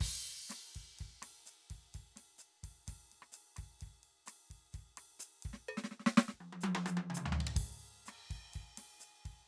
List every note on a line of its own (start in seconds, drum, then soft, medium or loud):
0.01 kick medium
0.01 crash loud
0.49 cross-stick soft
0.49 snare soft
0.49 hi-hat pedal medium
0.49 ride medium
0.75 kick soft
0.75 ride soft
0.97 kick soft
0.97 hi-hat pedal soft
0.97 ride soft
1.06 kick soft
1.06 snare soft
1.22 cross-stick soft
1.22 snare soft
1.22 ride medium
1.46 hi-hat pedal medium
1.46 ride soft
1.71 kick soft
1.71 ride soft
1.94 kick soft
1.94 hi-hat pedal soft
1.94 ride soft
2.00 kick soft
2.16 snare soft
2.16 ride medium
2.39 hi-hat pedal medium
2.39 ride soft
2.64 kick soft
2.64 ride medium
2.87 kick soft
2.87 snare soft
2.87 hi-hat pedal soft
2.87 ride medium
2.93 kick soft
3.12 snare soft
3.12 ride soft
3.23 cross-stick soft
3.32 hi-hat pedal medium
3.32 ride medium
3.57 kick soft
3.57 cross-stick soft
3.57 ride medium
3.64 kick soft
3.80 kick soft
3.80 hi-hat pedal soft
3.80 ride soft
3.88 kick soft
4.04 ride soft
4.27 cross-stick soft
4.27 snare soft
4.27 hi-hat pedal medium
4.27 ride medium
4.51 kick soft
4.51 ride soft
4.73 kick soft
4.73 hi-hat pedal soft
4.73 ride soft
4.80 kick soft
4.98 cross-stick soft
4.98 ride medium
5.20 hi-hat pedal loud
5.20 ride medium
5.43 kick soft
5.43 ride medium
5.51 kick soft
5.51 snare soft
5.69 percussion loud
5.78 snare medium
5.84 snare soft
5.92 snare soft
6.00 snare soft
6.07 snare medium
6.18 snare loud
6.29 snare soft
6.34 kick soft
6.41 high tom soft
6.53 high tom medium
6.61 hi-hat pedal medium
6.61 high tom loud
6.75 high tom medium
6.86 hi-hat pedal loud
6.86 high tom loud
6.98 high tom medium
7.11 mid tom medium
7.15 hi-hat pedal loud
7.15 mid tom medium
7.26 floor tom medium
7.33 floor tom medium
7.41 floor tom medium
7.47 floor tom loud
7.56 kick medium
7.56 ride loud
8.06 cross-stick medium
8.06 snare soft
8.06 hi-hat pedal medium
8.06 ride soft
8.31 kick soft
8.31 ride soft
8.36 kick soft
8.53 kick soft
8.53 hi-hat pedal soft
8.53 ride soft
8.61 kick soft
8.78 snare soft
8.78 ride medium
9.00 hi-hat pedal medium
9.00 ride soft
9.26 kick soft
9.26 ride soft